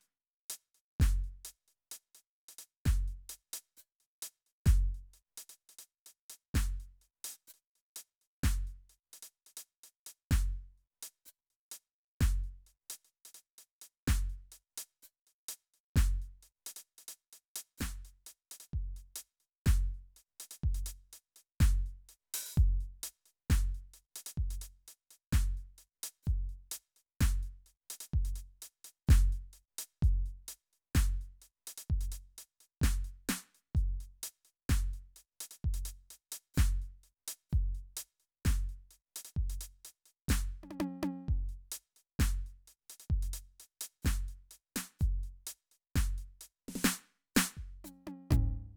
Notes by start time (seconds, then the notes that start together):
0.01 closed hi-hat
0.50 closed hi-hat
0.74 closed hi-hat
1.00 kick, snare, closed hi-hat
1.24 closed hi-hat
1.45 closed hi-hat
1.68 closed hi-hat
1.91 closed hi-hat
2.15 closed hi-hat
2.48 closed hi-hat
2.58 closed hi-hat
2.85 kick, snare, closed hi-hat
3.08 closed hi-hat
3.29 closed hi-hat
3.53 closed hi-hat
3.77 closed hi-hat, hi-hat pedal
4.00 closed hi-hat
4.22 closed hi-hat
4.46 closed hi-hat
4.66 closed hi-hat, kick, snare
4.94 closed hi-hat
5.13 closed hi-hat
5.38 closed hi-hat
5.49 closed hi-hat
5.69 closed hi-hat
5.79 closed hi-hat
6.06 closed hi-hat
6.30 closed hi-hat
6.54 kick, snare, closed hi-hat
6.80 closed hi-hat
7.01 closed hi-hat
7.24 open hi-hat
7.47 hi-hat pedal
7.54 closed hi-hat
7.75 closed hi-hat
7.96 closed hi-hat
8.21 closed hi-hat
8.43 kick, snare, closed hi-hat
8.67 closed hi-hat
8.89 closed hi-hat
9.13 closed hi-hat
9.22 closed hi-hat
9.46 closed hi-hat
9.57 closed hi-hat
9.83 closed hi-hat
10.06 closed hi-hat
10.31 kick, snare, closed hi-hat
10.78 closed hi-hat
11.03 closed hi-hat
11.25 hi-hat pedal
11.50 closed hi-hat
11.71 closed hi-hat
12.21 kick, snare, closed hi-hat
12.44 closed hi-hat
12.66 closed hi-hat
12.90 closed hi-hat
13.04 closed hi-hat
13.25 closed hi-hat
13.34 closed hi-hat
13.58 closed hi-hat
13.81 closed hi-hat
14.07 kick, snare, closed hi-hat
14.29 closed hi-hat
14.52 closed hi-hat
14.78 closed hi-hat
15.02 closed hi-hat, hi-hat pedal
15.27 closed hi-hat
15.48 closed hi-hat
15.74 closed hi-hat
15.96 kick, snare, closed hi-hat
16.22 closed hi-hat
16.43 closed hi-hat
16.66 closed hi-hat
16.76 closed hi-hat
16.98 closed hi-hat
17.08 closed hi-hat
17.33 closed hi-hat
17.56 closed hi-hat
17.78 kick, snare, hi-hat pedal
17.82 closed hi-hat
18.05 closed hi-hat
18.26 closed hi-hat
18.51 closed hi-hat
18.60 closed hi-hat
18.73 kick
18.96 closed hi-hat
19.16 closed hi-hat
19.40 closed hi-hat
19.66 kick, snare, closed hi-hat
19.94 closed hi-hat
20.16 closed hi-hat
20.40 closed hi-hat
20.51 closed hi-hat
20.63 kick
20.74 closed hi-hat
20.86 closed hi-hat
21.13 closed hi-hat
21.36 closed hi-hat
21.60 kick, snare, closed hi-hat
21.86 closed hi-hat
22.09 closed hi-hat
22.34 open hi-hat
22.55 kick, closed hi-hat, hi-hat pedal
22.80 closed hi-hat
23.03 closed hi-hat
23.26 closed hi-hat
23.50 kick, snare, closed hi-hat
23.74 closed hi-hat
23.94 closed hi-hat
24.16 closed hi-hat
24.26 closed hi-hat
24.37 kick
24.50 closed hi-hat
24.61 closed hi-hat
24.88 closed hi-hat
25.11 closed hi-hat
25.32 kick, snare, closed hi-hat
25.57 closed hi-hat
25.78 closed hi-hat
26.03 closed hi-hat
26.23 closed hi-hat, hi-hat pedal
26.27 kick
26.49 closed hi-hat
26.71 closed hi-hat
26.96 closed hi-hat
27.21 kick, snare, closed hi-hat
27.43 closed hi-hat
27.66 closed hi-hat
27.90 closed hi-hat
28.00 closed hi-hat
28.13 kick
28.25 closed hi-hat
28.36 closed hi-hat
28.62 closed hi-hat
28.84 open hi-hat
29.07 kick, snare, closed hi-hat, hi-hat pedal
29.32 closed hi-hat
29.53 closed hi-hat
29.78 closed hi-hat
30.02 kick, closed hi-hat
30.26 closed hi-hat
30.48 closed hi-hat
30.73 closed hi-hat
30.95 kick, snare, closed hi-hat
31.21 closed hi-hat
31.42 closed hi-hat
31.67 closed hi-hat
31.78 closed hi-hat
31.90 kick
32.01 closed hi-hat
32.12 closed hi-hat
32.38 closed hi-hat
32.60 closed hi-hat
32.81 kick, snare, closed hi-hat
33.04 closed hi-hat
33.29 closed hi-hat, snare
33.54 closed hi-hat
33.75 kick, closed hi-hat
34.00 closed hi-hat
34.23 closed hi-hat
34.45 closed hi-hat
34.69 kick, snare, closed hi-hat
34.93 closed hi-hat
35.16 closed hi-hat
35.40 closed hi-hat
35.51 closed hi-hat
35.64 kick
35.74 closed hi-hat
35.85 closed hi-hat
36.10 closed hi-hat
36.32 open hi-hat
36.54 kick, snare, hi-hat pedal
36.58 closed hi-hat
36.82 closed hi-hat
37.03 closed hi-hat
37.28 closed hi-hat
37.49 kick, closed hi-hat, hi-hat pedal
37.75 closed hi-hat
37.97 closed hi-hat
38.20 closed hi-hat
38.45 kick, snare, closed hi-hat
38.50 snare
38.69 closed hi-hat
38.91 closed hi-hat
39.16 closed hi-hat
39.25 closed hi-hat
39.36 kick
39.50 closed hi-hat
39.61 closed hi-hat
39.85 closed hi-hat
40.05 closed hi-hat
40.28 kick, snare, closed hi-hat
40.63 high tom
40.71 high tom
40.80 high tom
41.03 high tom
41.28 kick
41.49 closed hi-hat
41.72 closed hi-hat
41.96 closed hi-hat
42.19 kick, snare, closed hi-hat
42.46 closed hi-hat
42.67 closed hi-hat
42.90 closed hi-hat
43.00 closed hi-hat
43.10 kick
43.22 closed hi-hat
43.33 closed hi-hat
43.60 closed hi-hat
43.81 open hi-hat
44.02 kick, snare, closed hi-hat, hi-hat pedal
44.28 closed hi-hat
44.51 closed hi-hat
44.76 open hi-hat, snare
44.99 kick, closed hi-hat, hi-hat pedal
45.23 closed hi-hat
45.47 closed hi-hat
45.71 closed hi-hat
45.96 kick, snare, closed hi-hat
46.18 closed hi-hat
46.41 closed hi-hat
46.68 snare
46.75 snare
46.82 snare, hi-hat pedal
47.35 snare, hi-hat pedal
47.57 kick
47.84 hi-hat pedal, high tom
48.07 high tom
48.30 kick, floor tom, hi-hat pedal, high tom